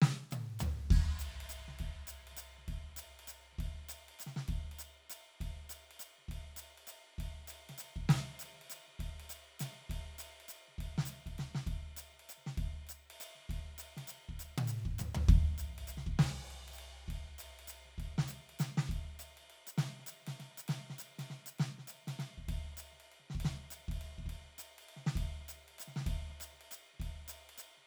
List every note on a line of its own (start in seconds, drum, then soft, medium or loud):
0.02 snare loud
0.31 high tom medium
0.31 percussion medium
0.59 floor tom loud
0.59 percussion medium
0.90 kick loud
0.90 ride medium
0.90 crash medium
1.19 ride medium
1.19 percussion medium
1.40 ride medium
1.49 ride medium
1.49 percussion medium
1.68 snare soft
1.79 kick soft
1.79 ride medium
2.07 ride soft
2.07 percussion medium
2.27 ride soft
2.32 snare soft
2.37 ride soft
2.37 percussion medium
2.58 snare soft
2.68 kick soft
2.68 ride soft
2.96 ride medium
2.96 percussion medium
3.19 ride soft
3.27 ride soft
3.27 percussion medium
3.52 snare soft
3.58 kick soft
3.58 ride soft
3.89 ride medium
3.89 percussion medium
4.08 ride soft
4.19 ride soft
4.19 percussion medium
4.26 snare soft
4.36 snare medium
4.48 kick medium
4.48 ride soft
4.71 ride soft
4.79 ride soft
4.79 percussion medium
5.10 ride medium
5.10 percussion medium
5.41 kick soft
5.41 ride medium
5.69 ride soft
5.69 percussion medium
5.91 ride soft
5.99 ride soft
5.99 percussion medium
6.18 snare soft
6.28 kick soft
6.28 ride medium
6.56 ride soft
6.56 percussion medium
6.78 ride soft
6.87 ride medium
6.87 percussion medium
7.18 kick soft
7.18 ride medium
7.38 snare soft
7.47 ride medium
7.47 percussion medium
7.69 snare soft
7.69 ride soft
7.78 ride medium
7.78 percussion medium
7.96 kick soft
8.09 snare loud
8.09 ride medium
8.39 ride medium
8.39 percussion medium
8.61 ride soft
8.70 ride soft
8.70 percussion medium
8.88 snare soft
8.99 kick soft
8.99 ride medium
9.20 ride soft
9.29 ride medium
9.29 percussion medium
9.60 snare soft
9.60 ride medium
9.60 percussion medium
9.89 kick soft
9.89 ride medium
10.18 ride medium
10.18 percussion medium
10.40 ride soft
10.48 ride soft
10.48 percussion medium
10.68 snare soft
10.78 kick soft
10.78 ride medium
10.98 snare medium
11.05 ride soft
11.05 percussion medium
11.26 kick soft
11.26 ride soft
11.38 snare soft
11.38 ride soft
11.55 snare medium
11.67 kick medium
11.67 ride soft
11.85 snare soft
11.97 ride soft
11.97 percussion medium
12.13 snare soft
12.19 ride soft
12.29 ride soft
12.29 percussion medium
12.37 snare soft
12.46 snare soft
12.57 kick medium
12.57 ride soft
12.87 ride soft
12.87 percussion medium
13.10 ride medium
13.20 ride medium
13.20 percussion medium
13.35 snare soft
13.40 snare soft
13.49 kick soft
13.49 ride medium
13.68 snare soft
13.78 ride medium
13.78 percussion medium
13.97 snare soft
13.97 ride soft
14.07 ride soft
14.07 percussion medium
14.29 kick soft
14.39 ride soft
14.39 percussion medium
14.58 high tom loud
14.68 ride soft
14.68 percussion medium
14.85 kick soft
14.98 floor tom medium
14.98 percussion medium
15.15 floor tom loud
15.29 kick loud
15.29 ride medium
15.58 ride soft
15.58 percussion medium
15.78 ride medium
15.87 ride soft
15.87 percussion medium
15.97 snare soft
16.06 kick medium
16.19 snare loud
16.19 crash medium
16.44 percussion soft
16.50 ride soft
16.62 snare soft
16.68 ride soft
16.73 percussion soft
16.78 ride medium
16.94 snare soft
17.01 snare soft
17.08 kick soft
17.08 ride soft
17.25 snare soft
17.38 ride medium
17.38 percussion medium
17.59 ride soft
17.67 ride soft
17.67 percussion medium
17.85 snare soft
17.98 kick soft
17.98 ride soft
18.18 snare medium
18.28 ride soft
18.28 percussion medium
18.49 ride soft
18.59 snare medium
18.59 ride soft
18.59 percussion medium
18.77 snare medium
18.89 kick medium
18.89 ride medium
19.11 snare soft
19.19 ride soft
19.19 percussion medium
19.37 ride soft
19.50 ride soft
19.67 percussion medium
19.78 snare medium
19.78 ride medium
19.99 snare soft
20.06 ride soft
20.06 percussion medium
20.27 snare soft
20.27 ride medium
20.40 snare soft
20.40 ride soft
20.57 percussion medium
20.68 snare medium
20.68 ride medium
20.90 snare soft
20.98 ride soft
20.98 percussion medium
21.19 snare soft
21.19 ride medium
21.19 percussion soft
21.30 snare soft
21.30 ride soft
21.46 percussion medium
21.59 snare medium
21.59 ride soft
21.78 snare soft
21.87 ride soft
21.87 percussion medium
22.07 snare soft
22.07 ride medium
22.19 snare soft
22.19 ride soft
22.38 kick soft
22.48 kick medium
22.48 ride medium
22.66 snare soft
22.77 ride soft
22.77 percussion medium
22.92 snare soft
23.00 ride soft
23.12 ride soft
23.19 snare soft
23.30 snare soft
23.35 kick soft
23.40 ride medium
23.45 snare medium
23.70 ride soft
23.70 percussion medium
23.88 kick soft
23.88 ride soft
24.01 ride soft
24.10 snare soft
24.18 kick soft
24.26 kick soft
24.26 ride soft
24.43 snare soft
24.58 ride soft
24.58 percussion medium
24.78 ride soft
24.78 percussion soft
24.89 ride soft
24.96 snare soft
25.06 snare medium
25.15 kick medium
25.15 ride medium
25.48 ride soft
25.48 percussion medium
25.68 ride soft
25.78 ride soft
25.78 percussion medium
25.88 snare soft
25.96 snare medium
26.01 snare soft
26.06 kick medium
26.06 ride medium
26.30 snare soft
26.40 ride soft
26.40 percussion medium
26.53 snare soft
26.61 ride soft
26.71 ride soft
26.71 percussion medium
26.93 snare soft
27.00 kick soft
27.00 ride medium
27.21 snare soft
27.28 ride medium
27.28 percussion medium
27.49 ride soft
27.58 ride soft
27.58 percussion medium
27.77 snare soft